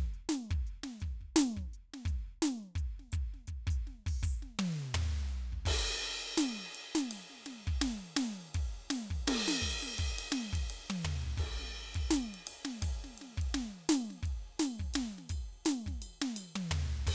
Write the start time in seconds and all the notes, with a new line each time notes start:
0.13 open hi-hat
0.29 snare
0.50 kick, closed hi-hat
0.67 closed hi-hat
0.83 snare
1.00 kick, closed hi-hat
1.21 kick
1.36 open hi-hat, snare
1.56 kick
1.73 open hi-hat
1.93 snare
2.05 kick, open hi-hat
2.42 open hi-hat, snare
2.75 kick, open hi-hat
2.99 snare
3.12 open hi-hat, kick
3.33 snare
3.47 kick, open hi-hat
3.67 kick, open hi-hat
3.87 snare
4.06 kick, open hi-hat
4.23 open hi-hat, kick
4.42 snare
4.59 high tom
4.76 snare
4.84 snare
4.94 floor tom, hi-hat pedal
5.28 hi-hat pedal
5.52 kick
5.65 kick, crash, ride
6.02 hi-hat pedal
6.37 snare, ride
6.74 hi-hat pedal, ride
6.95 snare
7.10 hi-hat pedal, ride
7.30 snare
7.44 snare, hi-hat pedal, ride
7.67 kick
7.81 snare, ride
8.16 snare, ride
8.40 snare
8.54 kick, ride
8.90 snare, ride
9.10 kick
9.27 snare, ride
9.48 snare
9.61 kick, hi-hat pedal, ride
9.82 snare
9.98 kick, ride
10.18 ride
10.32 snare
10.53 kick, ride
10.70 ride
10.90 open hi-hat, high tom
11.02 floor tom, hi-hat pedal
11.23 kick, snare
11.37 kick, ride
11.59 snare
11.76 snare, hi-hat pedal
11.94 kick, ride
12.10 snare
12.34 ride
12.46 kick, hi-hat pedal, ride
12.65 snare
12.82 kick, ride
13.04 snare
13.18 snare, ride
13.37 kick
13.41 ride
13.54 snare
13.89 snare, ride bell
14.10 snare
14.22 kick, hi-hat pedal, ride
14.59 snare, ride bell
14.79 kick
14.94 snare, ride bell
15.18 snare
15.29 kick, hi-hat pedal, ride bell
15.65 snare, ride bell
15.86 kick, snare
16.02 hi-hat pedal, ride bell
16.21 snare
16.36 ride bell
16.41 hi-hat pedal
16.55 high tom
16.70 floor tom, hi-hat pedal
16.86 kick
17.07 kick, ride bell, crash